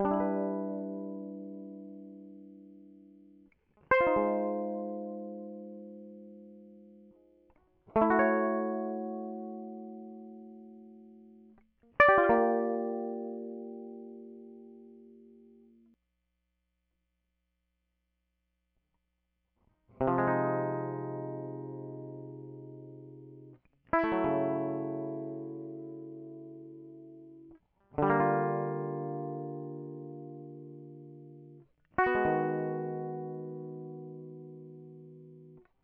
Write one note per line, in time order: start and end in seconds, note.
0.00 3.52 G3
0.05 3.50 D4
0.11 3.50 E4
0.20 3.10 B4
3.77 3.85 G#3
3.91 7.54 C5
4.01 7.54 F4
4.07 7.55 D#4
4.17 7.15 G#3
7.96 11.72 A3
8.01 11.54 E4
8.10 11.54 F#4
8.19 11.11 C#5
11.83 11.95 A#3
12.00 14.68 D5
12.09 15.77 G4
12.25 16.04 F4
12.30 16.13 A#3
20.02 23.58 C3
20.08 23.57 F3
20.19 23.54 G#3
20.28 23.58 D#4
23.93 27.59 E4
24.04 27.48 A3
24.12 27.59 F#3
24.25 27.56 C#3
27.99 31.65 D3
28.03 31.65 G3
28.10 31.65 A#3
28.20 31.65 F4
31.98 35.69 F#4
32.07 35.61 B3
32.15 35.66 G#3
32.26 35.63 D#3